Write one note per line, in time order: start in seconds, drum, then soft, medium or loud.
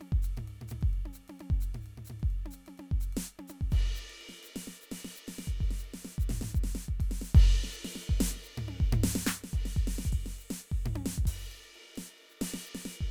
0.01 high tom medium
0.01 ride medium
0.12 kick medium
0.22 hi-hat pedal medium
0.22 ride medium
0.37 floor tom medium
0.37 ride soft
0.48 ride medium
0.61 floor tom medium
0.68 floor tom medium
0.68 hi-hat pedal medium
0.68 ride medium
0.81 kick medium
0.81 ride soft
0.88 hi-hat pedal soft
0.93 ride soft
1.06 high tom medium
1.13 hi-hat pedal medium
1.13 ride medium
1.28 high tom medium
1.28 ride medium
1.34 hi-hat pedal soft
1.40 high tom medium
1.40 ride medium
1.50 kick medium
1.61 hi-hat pedal medium
1.61 ride medium
1.75 floor tom medium
1.75 ride soft
1.81 hi-hat pedal soft
1.86 ride medium
1.98 floor tom soft
2.05 hi-hat pedal medium
2.05 ride medium
2.10 floor tom medium
2.20 kick medium
2.20 ride soft
2.26 hi-hat pedal soft
2.31 ride soft
2.46 high tom medium
2.51 hi-hat pedal medium
2.51 ride medium
2.67 high tom medium
2.67 ride medium
2.78 high tom medium
2.78 ride soft
2.92 kick medium
3.00 hi-hat pedal medium
3.00 ride medium
3.13 ride medium
3.17 snare medium
3.22 hi-hat pedal soft
3.22 ride soft
3.39 high tom medium
3.48 hi-hat pedal medium
3.48 high tom medium
3.48 ride medium
3.61 kick medium
3.70 kick medium
3.70 hi-hat pedal soft
3.70 ride medium
3.95 hi-hat pedal medium
3.95 ride soft
4.10 ride medium
4.21 ride medium
4.29 snare soft
4.43 hi-hat pedal medium
4.43 ride medium
4.56 snare medium
4.56 ride medium
4.67 snare soft
4.67 ride soft
4.81 hi-hat pedal medium
4.92 snare medium
4.92 ride medium
5.05 snare soft
5.15 hi-hat pedal medium
5.15 ride medium
5.28 snare soft
5.28 ride medium
5.39 snare soft
5.39 ride soft
5.48 kick medium
5.61 kick medium
5.61 ride soft
5.71 snare soft
5.78 hi-hat pedal medium
5.85 ride soft
5.94 snare soft
5.94 ride soft
6.05 snare soft
6.05 ride soft
6.18 kick medium
6.18 hi-hat pedal medium
6.29 snare medium
6.29 floor tom medium
6.41 snare medium
6.41 floor tom medium
6.54 kick medium
6.54 hi-hat pedal medium
6.64 snare soft
6.64 ride medium
6.75 snare medium
6.75 ride soft
6.89 kick medium
7.00 kick medium
7.00 ride medium
7.11 snare soft
7.22 snare soft
7.22 hi-hat pedal medium
7.35 kick loud
7.35 ride loud
7.64 snare soft
7.72 hi-hat pedal medium
7.72 ride medium
7.85 snare medium
7.85 ride medium
7.96 snare soft
7.96 ride soft
8.10 kick medium
8.21 snare loud
8.21 ride medium
8.31 snare soft
8.34 snare soft
8.36 snare soft
8.43 hi-hat pedal medium
8.43 ride soft
8.58 floor tom medium
8.68 high tom medium
8.80 kick medium
8.93 floor tom loud
9.04 snare loud
9.15 snare medium
9.27 snare loud
9.44 snare soft
9.53 kick medium
9.53 ride medium
9.66 snare soft
9.77 kick medium
9.77 crash soft
9.88 snare medium
9.99 snare medium
10.05 kick medium
10.12 kick medium
10.12 crash medium
10.26 snare soft
10.39 hi-hat pedal medium
10.39 ride medium
10.51 snare medium
10.51 ride medium
10.64 ride soft
10.72 kick medium
10.86 floor tom medium
10.96 high tom medium
11.06 snare medium
11.18 kick medium
11.26 open hi-hat medium
11.26 kick medium
11.26 ride medium
11.52 ride medium
11.64 ride soft
11.75 ride soft
11.96 snare medium
11.96 ride medium
12.07 ride soft
12.18 ride soft
12.29 hi-hat pedal soft
12.42 snare medium
12.42 ride medium
12.54 snare medium
12.64 hi-hat pedal medium
12.64 ride medium
12.75 snare medium
12.75 ride medium
12.85 snare medium
12.89 ride soft
13.01 kick medium